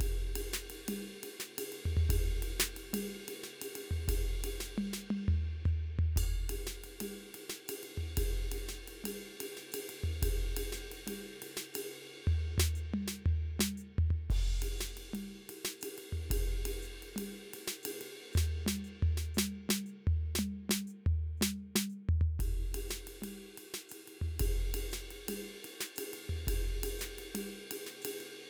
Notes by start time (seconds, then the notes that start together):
0.01 kick, ride
0.36 ride
0.54 snare, hi-hat pedal
0.71 ride
0.89 mid tom, ride
1.24 ride
1.41 snare
1.59 hi-hat pedal, ride
1.73 ride
1.86 floor tom
1.97 floor tom
2.10 kick, ride
2.43 ride
2.60 snare, hi-hat pedal
2.77 ride
2.94 mid tom, ride
3.29 ride
3.44 snare
3.62 hi-hat pedal, ride
3.76 ride
3.92 floor tom
4.09 kick, ride
4.45 ride
4.61 snare, hi-hat pedal
4.78 mid tom
4.94 snare
5.11 mid tom
5.29 floor tom
5.66 floor tom, hi-hat pedal
5.99 floor tom
6.17 kick, ride bell
6.50 ride
6.67 snare, hi-hat pedal
6.84 ride
7.01 mid tom, ride
7.35 ride
7.50 snare
7.69 hi-hat pedal, ride
7.84 ride
7.98 floor tom
8.18 kick, ride
8.52 ride
8.69 snare, hi-hat pedal
8.88 ride
9.05 mid tom, ride
9.19 hi-hat pedal
9.41 ride
9.58 snare
9.73 hi-hat pedal, ride
9.90 ride
10.04 floor tom
10.23 kick, ride
10.57 ride
10.73 snare, hi-hat pedal
10.92 ride
11.08 mid tom, ride
11.23 hi-hat pedal
11.43 ride
11.58 snare
11.75 hi-hat pedal, ride
12.28 floor tom
12.59 snare, floor tom
12.76 hi-hat pedal
12.94 mid tom
13.08 snare
13.26 floor tom
13.60 snare, mid tom
13.78 hi-hat pedal
13.99 floor tom
14.11 floor tom
14.31 kick, ride
14.63 ride
14.79 snare, hi-hat pedal
14.98 ride
15.14 mid tom, ride
15.50 ride
15.65 snare
15.82 hi-hat pedal, ride
15.99 ride
16.13 floor tom
16.31 kick, ride
16.66 ride
16.83 hi-hat pedal
17.03 ride
17.17 mid tom, ride
17.54 ride
17.68 snare
17.84 hi-hat pedal, ride
18.02 ride
18.34 floor tom, hi-hat pedal
18.38 snare
18.67 snare, mid tom
18.85 hi-hat pedal
19.03 floor tom
19.18 snare
19.35 snare, hi-hat pedal, mid tom
19.70 snare, mid tom
19.87 hi-hat pedal
20.08 floor tom
20.36 snare, hi-hat pedal, mid tom
20.70 snare, mid tom
20.88 hi-hat pedal
21.07 floor tom
21.38 hi-hat pedal, mid tom
21.43 snare
21.76 snare, mid tom
21.90 hi-hat pedal
22.09 floor tom
22.22 floor tom
22.40 kick, ride
22.69 ride
22.75 ride
22.90 snare, hi-hat pedal
23.08 ride
23.23 mid tom, ride
23.58 ride
23.75 snare
23.90 hi-hat pedal, ride
24.08 ride
24.21 kick, floor tom
24.40 kick, ride
24.75 ride
24.92 snare, hi-hat pedal
25.11 ride
25.29 mid tom, ride
25.65 ride
25.81 snare
25.97 hi-hat pedal, ride
26.14 ride
26.30 floor tom
26.48 kick, ride
26.84 ride
27.00 snare, hi-hat pedal
27.19 ride
27.35 mid tom, ride
27.72 ride
27.87 snare
28.03 hi-hat pedal, ride
28.21 ride